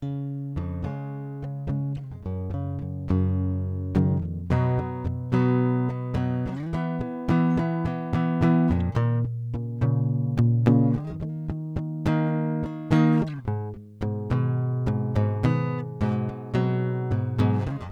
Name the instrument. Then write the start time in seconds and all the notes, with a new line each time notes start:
acoustic guitar
0.01 C#3 C#4
0.57 F2 C#3
0.85 C#3 G#3 C#4
1.44 C#3 G#3 C#4
1.69 C#3 G#3 C#4
2.27 F#2
2.51 F#2
2.56 C#3
2.80 F#2 C#3
3.09 F#2 C#3
3.96 F#2 C#3 D#3
4.19 F2 A#2
4.52 B2 F#3 B3
4.80 B2
5.06 B2
5.33 B2 F#3 B3
5.90 B2
6.15 B2 F#3 B3
6.74 E3 B3 E4
7.02 E3
7.31 E3 B3 E4
7.58 E3 B3 E4
7.87 E3 B3
8.15 E3 B3 E4
8.43 E3 B3 E4
8.71 F2 A#2
8.97 A#2
9.26 A#2
9.54 A#2 C#3
9.82 A#2 C#3
10.39 A#2 C#3
10.67 A#2 C#3 G#3
10.99 G#3
11.06 D#3 G#3
11.22 D#3
11.51 D#3
11.78 D#3 A#3
12.08 D#3 A#3
12.65 D#3 A#3
12.92 D#3 A#3 D#4
13.49 G#2
13.75 G#2
14.02 G#2 B2
14.31 G#2 B2 G#3
14.88 G#2 B2 C4
15.16 G#2 B2 D#3 C4
15.45 B2 B3
16.02 G#2 B2 F#3
16.30 B2
16.55 B2 F#3 C4
17.12 G#2 B2
17.40 G#2 B2 F#3 G3
17.72 G#3